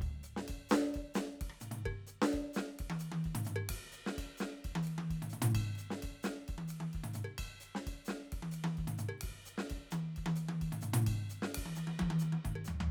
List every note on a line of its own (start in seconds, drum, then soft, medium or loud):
0.01 kick soft
0.01 ride bell soft
0.07 kick soft
0.11 kick soft
0.23 hi-hat pedal medium
0.23 ride soft
0.37 snare medium
0.48 kick soft
0.48 ride bell medium
0.69 snare loud
0.69 hi-hat pedal medium
0.94 kick soft
0.94 ride bell soft
1.14 snare loud
1.14 hi-hat pedal medium
1.41 kick soft
1.41 ride medium
1.49 kick soft
1.49 cross-stick soft
1.60 hi-hat pedal medium
1.60 mid tom medium
1.85 kick soft
1.85 percussion loud
2.07 hi-hat pedal medium
2.07 percussion soft
2.22 snare medium
2.33 kick soft
2.33 ride bell medium
2.53 snare medium
2.53 hi-hat pedal medium
2.79 kick soft
2.79 ride medium
2.90 high tom medium
2.99 hi-hat pedal medium
2.99 ride medium
3.12 high tom loud
3.24 kick soft
3.24 ride bell soft
3.35 mid tom loud
3.45 hi-hat pedal medium
3.45 mid tom medium
3.56 percussion loud
3.69 kick soft
3.69 ride loud
3.92 hi-hat pedal medium
4.06 snare medium
4.18 kick soft
4.18 ride bell medium
4.37 snare medium
4.37 hi-hat pedal medium
4.64 kick soft
4.64 ride bell medium
4.71 kick soft
4.75 high tom medium
4.83 hi-hat pedal medium
4.87 ride medium
4.98 high tom medium
5.10 kick soft
5.10 ride bell soft
5.16 kick soft
5.22 mid tom medium
5.30 hi-hat pedal medium
5.30 mid tom medium
5.42 mid tom loud
5.55 kick soft
5.55 ride bell loud
5.60 kick soft
5.75 hi-hat pedal medium
5.75 ride soft
5.91 snare medium
6.02 kick soft
6.02 ride bell medium
6.23 snare medium
6.23 hi-hat pedal medium
6.48 kick soft
6.48 ride bell medium
6.58 high tom medium
6.68 hi-hat pedal medium
6.68 ride medium
6.80 high tom medium
6.93 kick soft
6.93 ride bell soft
7.00 kick soft
7.00 mid tom medium
7.13 hi-hat pedal medium
7.13 mid tom medium
7.24 percussion medium
7.31 percussion soft
7.38 kick soft
7.38 ride bell loud
7.44 kick soft
7.60 hi-hat pedal medium
7.60 ride soft
7.75 snare medium
7.87 kick soft
7.87 ride bell medium
7.94 kick soft
8.05 snare medium
8.05 hi-hat pedal medium
8.32 kick soft
8.32 ride medium
8.42 high tom medium
8.51 hi-hat pedal medium
8.51 ride medium
8.64 high tom medium
8.77 kick soft
8.77 ride bell soft
8.84 kick soft
8.84 mid tom medium
8.98 hi-hat pedal medium
8.98 mid tom medium
9.09 percussion loud
9.17 mid tom soft
9.17 ride loud
9.23 kick soft
9.42 hi-hat pedal medium
9.42 ride soft
9.58 snare medium
9.70 kick soft
9.70 ride bell medium
9.77 kick soft
9.91 hi-hat pedal medium
9.91 high tom medium
10.16 kick soft
10.16 ride bell soft
10.23 kick soft
10.23 high tom loud
10.36 hi-hat pedal medium
10.36 ride soft
10.49 high tom loud
10.61 kick soft
10.61 ride bell medium
10.72 mid tom medium
10.81 hi-hat pedal medium
10.81 mid tom medium
10.94 mid tom loud
11.07 kick soft
11.07 ride bell medium
11.13 kick soft
11.30 hi-hat pedal medium
11.30 ride soft
11.42 snare medium
11.55 kick soft
11.55 ride loud
11.63 kick soft
11.63 high tom medium
11.75 hi-hat pedal medium
11.75 high tom medium
11.87 high tom medium
11.99 kick soft
11.99 high tom loud
12.10 high tom loud
12.19 hi-hat pedal medium
12.19 high tom medium
12.32 high tom medium
12.45 kick soft
12.45 mid tom medium
12.52 kick soft
12.52 percussion medium
12.65 floor tom medium
12.65 hi-hat pedal medium
12.80 floor tom loud